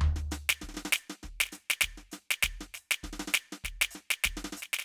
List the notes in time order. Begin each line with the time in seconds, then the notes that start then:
0.01 kick, floor tom
0.16 snare
0.31 snare, hi-hat pedal
0.49 snare
0.61 kick, snare
0.69 snare
0.74 snare
0.77 snare
0.85 snare
0.93 snare, hi-hat pedal
1.10 snare
1.23 kick, snare
1.40 snare
1.46 snare
1.52 snare, hi-hat pedal
1.70 snare
1.81 kick, snare
1.97 snare
2.12 snare, hi-hat pedal
2.31 snare
2.43 kick, snare
2.61 snare
2.74 snare, hi-hat pedal
2.91 snare
3.03 kick, snare
3.13 snare
3.19 snare
3.28 snare
3.33 snare, hi-hat pedal
3.52 snare
3.64 kick, snare
3.81 snare
3.91 hi-hat pedal
3.95 snare
4.10 snare
4.24 kick, snare
4.37 snare
4.44 snare
4.52 snare
4.57 hi-hat pedal
4.62 snare
4.73 snare
4.79 snare
4.81 snare